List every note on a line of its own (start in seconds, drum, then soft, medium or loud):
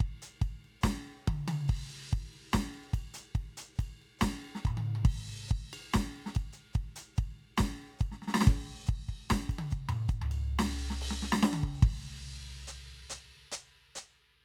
0.01 kick medium
0.01 ride soft
0.23 closed hi-hat loud
0.42 kick medium
0.42 ride bell medium
0.65 ride soft
0.82 kick medium
0.82 snare loud
0.82 hi-hat pedal medium
0.86 ride bell medium
1.08 ride soft
1.28 kick medium
1.28 high tom loud
1.28 ride medium
1.48 high tom loud
1.48 ride bell medium
1.69 kick medium
1.69 hi-hat pedal medium
1.69 crash loud
1.91 ride medium
2.12 kick medium
2.12 hi-hat pedal medium
2.12 ride medium
2.34 ride soft
2.52 kick medium
2.52 snare loud
2.52 hi-hat pedal medium
2.52 ride bell medium
2.75 ride bell soft
2.84 open hi-hat soft
2.90 kick medium
2.90 hi-hat pedal soft
2.95 ride bell medium
3.15 closed hi-hat loud
3.36 kick soft
3.36 ride medium
3.58 open hi-hat loud
3.76 kick soft
3.76 hi-hat pedal soft
3.81 ride bell medium
4.02 ride soft
4.19 kick soft
4.19 snare loud
4.19 hi-hat pedal soft
4.24 ride bell loud
4.45 ride soft
4.56 snare medium
4.66 kick medium
4.66 hi-hat pedal soft
4.66 mid tom loud
4.78 high tom medium
4.96 high tom medium
5.06 kick loud
5.06 crash loud
5.49 kick medium
5.49 hi-hat pedal medium
5.74 ride bell loud
5.93 kick medium
5.93 snare loud
5.93 hi-hat pedal medium
6.17 ride soft
6.27 snare medium
6.36 kick medium
6.36 hi-hat pedal medium
6.36 ride bell medium
6.53 closed hi-hat medium
6.74 kick medium
6.74 hi-hat pedal soft
6.74 ride medium
6.96 closed hi-hat loud
7.17 kick medium
7.17 hi-hat pedal soft
7.17 ride bell medium
7.40 ride soft
7.57 kick medium
7.57 snare loud
7.57 hi-hat pedal medium
7.57 ride bell medium
7.83 ride soft
7.99 kick medium
7.99 hi-hat pedal soft
7.99 ride bell medium
8.12 snare soft
8.23 snare soft
8.28 snare medium
8.35 snare loud
8.41 snare loud
8.48 kick loud
8.48 crash loud
8.87 kick medium
8.87 hi-hat pedal medium
9.09 kick soft
9.09 snare soft
9.09 floor tom soft
9.09 mid tom soft
9.09 ride soft
9.30 kick medium
9.30 snare loud
9.30 hi-hat pedal medium
9.50 kick soft
9.50 ride bell medium
9.59 high tom loud
9.71 kick soft
9.71 hi-hat pedal medium
9.89 mid tom loud
9.89 ride bell medium
10.09 kick medium
10.09 hi-hat pedal medium
10.22 floor tom loud
10.32 ride bell medium
10.60 snare loud
10.60 crash loud
10.91 snare medium
11.02 crash loud
11.11 snare medium
11.23 snare medium
11.33 snare loud
11.43 snare loud
11.43 hi-hat pedal medium
11.54 high tom loud
11.64 kick soft
11.64 floor tom medium
11.74 open hi-hat medium
11.83 kick loud
11.83 crash loud
12.68 hi-hat pedal medium
13.10 hi-hat pedal medium
13.52 hi-hat pedal loud
13.96 hi-hat pedal medium